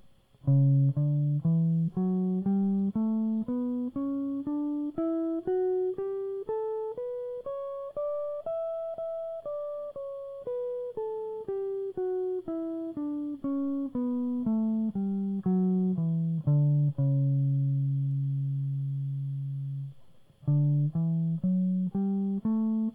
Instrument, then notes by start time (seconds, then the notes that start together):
electric guitar
0.49 C#3
0.98 D3
1.46 E3
1.97 F#3
2.47 G3
2.96 A3
3.49 B3
3.96 C#4
4.47 D4
4.98 E4
5.48 F#4
5.99 G4
6.49 A4
6.98 B4
7.46 C#5
7.97 D5
8.46 E5
8.96 E5
9.46 D5
9.97 C#5
10.47 B4
10.98 A4
11.49 G4
11.98 F#4
12.48 E4
12.97 D4
13.45 C#4
13.95 B3
14.47 A3
14.96 G3
15.47 F#3
15.99 E3
16.48 D3
17.00 C#3
20.49 D3
20.96 E3
21.44 F#3
21.95 G3
22.46 A3